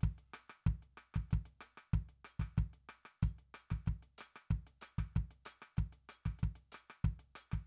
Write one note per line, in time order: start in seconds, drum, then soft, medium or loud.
0.01 kick medium
0.01 closed hi-hat soft
0.18 closed hi-hat soft
0.34 cross-stick medium
0.34 closed hi-hat medium
0.50 cross-stick soft
0.67 kick medium
0.67 closed hi-hat soft
0.83 closed hi-hat soft
0.98 cross-stick soft
0.98 closed hi-hat soft
1.14 kick medium
1.14 cross-stick soft
1.31 kick medium
1.31 closed hi-hat soft
1.46 closed hi-hat soft
1.61 cross-stick soft
1.61 closed hi-hat medium
1.78 cross-stick soft
1.94 kick medium
1.94 closed hi-hat soft
2.09 closed hi-hat soft
2.25 closed hi-hat soft
2.25 cross-stick soft
2.40 kick soft
2.40 cross-stick soft
2.57 kick medium
2.57 closed hi-hat soft
2.74 closed hi-hat soft
2.89 cross-stick medium
2.89 closed hi-hat soft
3.06 cross-stick soft
3.23 closed hi-hat soft
3.23 kick medium
3.39 closed hi-hat soft
3.55 closed hi-hat soft
3.55 cross-stick medium
3.71 kick soft
3.71 cross-stick soft
3.87 kick medium
3.87 closed hi-hat soft
4.03 closed hi-hat soft
4.18 closed hi-hat medium
4.18 cross-stick medium
4.36 cross-stick soft
4.51 kick medium
4.51 closed hi-hat soft
4.67 closed hi-hat soft
4.82 closed hi-hat medium
4.82 cross-stick soft
4.99 kick medium
4.99 cross-stick soft
5.16 kick medium
5.16 closed hi-hat soft
5.31 closed hi-hat soft
5.46 closed hi-hat medium
5.46 cross-stick medium
5.62 cross-stick soft
5.77 kick medium
5.77 closed hi-hat soft
5.93 closed hi-hat soft
6.09 closed hi-hat medium
6.09 cross-stick soft
6.26 kick soft
6.26 cross-stick soft
6.39 closed hi-hat soft
6.43 kick medium
6.56 closed hi-hat soft
6.72 closed hi-hat medium
6.72 cross-stick soft
6.90 cross-stick soft
7.05 kick medium
7.05 closed hi-hat soft
7.20 closed hi-hat soft
7.36 closed hi-hat medium
7.36 cross-stick soft
7.52 kick soft
7.52 cross-stick soft